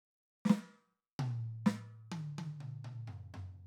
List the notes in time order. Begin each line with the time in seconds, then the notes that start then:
0.46 snare
0.50 snare
1.20 mid tom
1.67 snare
2.12 high tom
2.39 high tom
2.61 mid tom
2.85 mid tom
3.08 floor tom
3.35 floor tom